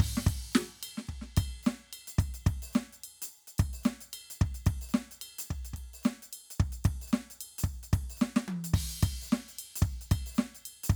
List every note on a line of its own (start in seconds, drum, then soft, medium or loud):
0.01 kick loud
0.01 crash loud
0.18 snare medium
0.27 kick loud
0.27 snare soft
0.27 ride medium
0.27 floor tom soft
0.53 snare loud
0.53 percussion medium
0.84 ride bell loud
0.98 snare medium
1.08 kick medium
1.08 ride soft
1.22 snare soft
1.38 kick loud
1.38 ride bell loud
1.64 snare loud
1.64 percussion medium
1.94 ride bell loud
2.08 percussion medium
2.19 kick loud
2.19 ride bell medium
2.35 percussion medium
2.47 kick loud
2.47 ride medium
2.63 percussion medium
2.74 snare loud
2.74 percussion medium
2.94 percussion medium
3.05 ride bell medium
3.23 percussion loud
3.30 ride soft
3.48 percussion medium
3.59 kick loud
3.59 ride bell medium
3.59 floor tom soft
3.74 percussion medium
3.84 snare loud
3.84 percussion medium
4.02 percussion medium
4.14 ride bell loud
4.31 percussion medium
4.42 kick loud
4.55 percussion medium
4.67 kick loud
4.67 ride medium
4.67 floor tom soft
4.82 percussion medium
4.90 percussion medium
4.95 snare loud
5.12 percussion medium
5.22 ride bell loud
5.39 percussion loud
5.51 kick medium
5.66 percussion medium
5.74 kick medium
5.74 snare soft
5.74 ride medium
5.74 floor tom soft
5.94 percussion medium
6.04 snare loud
6.04 percussion medium
6.23 percussion medium
6.34 ride bell medium
6.51 percussion medium
6.61 kick loud
6.73 percussion medium
6.85 kick loud
6.85 ride medium
6.85 floor tom soft
7.02 percussion medium
7.09 percussion medium
7.14 snare loud
7.31 percussion medium
7.42 ride bell loud
7.59 percussion loud
7.65 kick loud
7.84 percussion medium
7.94 kick loud
7.94 ride medium
7.94 floor tom soft
8.11 percussion medium
8.18 percussion medium
8.22 snare loud
8.37 snare loud
8.49 high tom loud
8.65 percussion loud
8.75 kick loud
8.75 crash loud
8.91 percussion medium
9.04 kick loud
9.04 ride bell loud
9.23 percussion medium
9.26 percussion medium
9.33 snare loud
9.49 percussion medium
9.60 ride bell loud
9.77 percussion loud
9.83 kick loud
10.02 percussion medium
10.12 kick loud
10.12 ride bell loud
10.27 percussion medium
10.36 snare loud
10.36 percussion medium
10.56 percussion medium
10.66 ride bell medium
10.84 percussion loud
10.90 kick loud